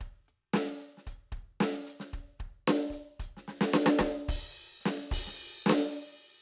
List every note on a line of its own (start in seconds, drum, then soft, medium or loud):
0.01 closed hi-hat soft
0.01 kick soft
0.29 closed hi-hat soft
0.54 snare loud
0.80 closed hi-hat medium
0.98 snare soft
1.07 closed hi-hat medium
1.07 kick soft
1.32 closed hi-hat soft
1.32 kick medium
1.61 snare loud
1.87 closed hi-hat medium
2.00 snare medium
2.14 closed hi-hat medium
2.14 kick medium
2.40 kick soft
2.40 closed hi-hat soft
2.68 snare loud
2.90 closed hi-hat medium
2.90 kick soft
3.20 closed hi-hat medium
3.20 kick medium
3.37 snare soft
3.48 snare medium
3.61 snare loud
3.71 snare loud
3.71 hi-hat pedal medium
3.86 snare loud
3.99 kick soft
3.99 snare loud
4.29 kick medium
4.29 crash loud
4.81 hi-hat pedal medium
4.86 snare loud
5.12 kick medium
5.12 crash loud
5.27 snare soft
5.37 hi-hat pedal medium
5.66 snare loud
5.70 snare loud
5.91 hi-hat pedal loud